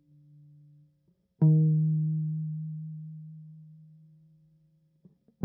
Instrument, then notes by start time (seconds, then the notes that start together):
electric guitar
1.45 D#3